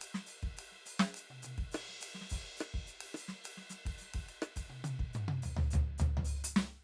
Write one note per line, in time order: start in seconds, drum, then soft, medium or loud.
0.01 hi-hat pedal medium
0.01 ride loud
0.14 snare medium
0.27 hi-hat pedal medium
0.27 ride soft
0.43 kick medium
0.43 ride medium
0.57 hi-hat pedal medium
0.57 ride loud
0.72 snare soft
0.86 hi-hat pedal medium
0.86 ride medium
1.00 snare loud
1.00 ride medium
1.14 hi-hat pedal medium
1.14 ride medium
1.30 high tom soft
1.42 hi-hat pedal medium
1.42 high tom medium
1.42 ride medium
1.58 kick medium
1.58 ride medium
1.72 cross-stick medium
1.72 hi-hat pedal medium
1.72 ride medium
1.89 snare soft
2.01 hi-hat pedal medium
2.01 ride loud
2.15 snare soft
2.21 snare soft
2.29 kick medium
2.29 hi-hat pedal medium
2.29 ride medium
2.57 cross-stick medium
2.57 hi-hat pedal medium
2.74 kick medium
2.78 snare soft
2.87 hi-hat pedal medium
3.01 ride loud
3.14 cross-stick medium
3.14 hi-hat pedal medium
3.28 snare medium
3.44 hi-hat pedal medium
3.44 ride loud
3.57 snare soft
3.70 snare soft
3.70 hi-hat pedal medium
3.70 ride medium
3.85 kick medium
3.85 ride medium
3.98 snare soft
3.98 hi-hat pedal medium
4.14 kick medium
4.14 ride loud
4.29 hi-hat pedal soft
4.29 ride medium
4.42 cross-stick medium
4.56 kick soft
4.56 hi-hat pedal medium
4.56 ride medium
4.70 high tom medium
4.84 hi-hat pedal medium
4.84 high tom medium
4.99 kick medium
5.13 hi-hat pedal soft
5.13 mid tom loud
5.28 open hi-hat soft
5.28 high tom loud
5.42 floor tom medium
5.42 hi-hat pedal medium
5.57 floor tom loud
5.71 floor tom loud
5.71 hi-hat pedal medium
5.98 floor tom loud
5.98 hi-hat pedal medium
6.17 floor tom loud
6.25 hi-hat pedal medium
6.44 open hi-hat loud
6.56 snare loud